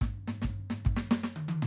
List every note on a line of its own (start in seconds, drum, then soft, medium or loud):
0.01 kick medium
0.01 snare medium
0.01 floor tom medium
0.28 snare medium
0.28 floor tom medium
0.42 kick medium
0.42 snare medium
0.42 floor tom medium
0.70 snare medium
0.70 floor tom medium
0.85 kick medium
0.85 floor tom medium
0.97 snare medium
1.11 snare loud
1.24 snare medium
1.36 high tom loud
1.48 high tom loud
1.62 floor tom loud